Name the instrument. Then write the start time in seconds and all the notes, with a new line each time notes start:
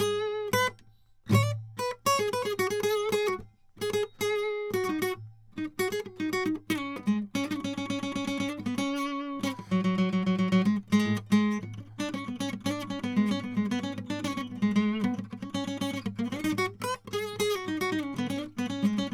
acoustic guitar
0.01 G#4
0.54 B4
1.30 A2 D3
1.35 D5
1.80 B4
2.07 C#5
2.20 G#4
2.34 B4
2.46 G#4
2.60 F#4
2.72 G#4
2.85 G#4
3.14 G#4
3.28 F#4
3.82 G#4
3.95 G#4
4.22 G#4
4.75 F#4
4.91 D#4
5.03 F#4
5.59 D#4
5.80 F#4
5.93 G#4
6.07 F#4
6.21 D#4
6.34 F#4
6.47 D#4
6.71 C#4
6.97 B3
7.08 G#3
7.36 C#4
7.52 D4
7.65 C#4
7.79 C#4
7.91 C#4
8.04 C#4
8.17 C#4
8.29 C#4
8.42 C#4
8.51 D4
8.67 B3
8.79 C#4
9.44 C#4
9.72 F#3
9.86 F#3
10.00 F#3
10.14 F#3
10.28 F#3
10.40 F#3
10.53 F#3
10.67 G#3
10.93 G#3
11.33 G#3
12.01 D4
12.15 C#4
12.29 B3
12.41 C#4
12.67 D4
12.91 C#4
13.04 B3
13.32 C#4
13.45 B3
13.72 B3
13.85 C#4
14.11 D4
14.25 C#4
14.63 G#3
14.77 G#3
15.05 B3
15.34 B3
15.43 C#4
15.55 C#4
15.69 C#4
15.82 C#4
15.99 B3
16.59 F#4
16.83 B4
17.14 G#4
17.41 G#4
17.52 F#4
17.69 D#4
17.93 D#4
18.05 C#4
18.18 D3 B3
18.31 D4
18.59 B3
18.71 C#4
18.84 G#3
18.99 C#4